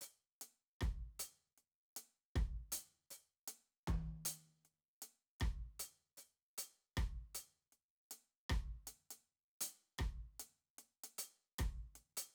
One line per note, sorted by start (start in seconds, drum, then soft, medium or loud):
0.01 closed hi-hat soft
0.01 hi-hat pedal medium
0.41 closed hi-hat medium
0.81 kick medium
0.81 cross-stick medium
0.81 closed hi-hat soft
1.19 closed hi-hat medium
1.58 closed hi-hat soft
1.96 closed hi-hat medium
2.36 kick medium
2.36 cross-stick soft
2.36 closed hi-hat soft
2.72 open hi-hat medium
3.10 closed hi-hat soft
3.10 hi-hat pedal medium
3.48 closed hi-hat medium
3.87 kick medium
3.87 closed hi-hat soft
3.87 high tom medium
4.25 closed hi-hat loud
4.65 closed hi-hat soft
5.02 closed hi-hat medium
5.40 kick medium
5.40 cross-stick medium
5.40 closed hi-hat soft
5.79 closed hi-hat medium
6.17 closed hi-hat soft
6.17 hi-hat pedal soft
6.58 closed hi-hat medium
6.97 kick medium
6.97 cross-stick medium
6.97 closed hi-hat soft
7.35 closed hi-hat medium
7.72 closed hi-hat soft
8.11 closed hi-hat medium
8.50 kick medium
8.50 cross-stick medium
8.50 closed hi-hat soft
8.87 closed hi-hat medium
9.11 closed hi-hat medium
9.61 closed hi-hat medium
9.98 kick medium
9.98 cross-stick medium
9.98 closed hi-hat soft
10.40 closed hi-hat medium
10.78 closed hi-hat soft
11.04 closed hi-hat medium
11.18 closed hi-hat medium
11.58 kick medium
11.58 cross-stick medium
11.58 closed hi-hat medium
11.95 closed hi-hat soft
12.17 closed hi-hat medium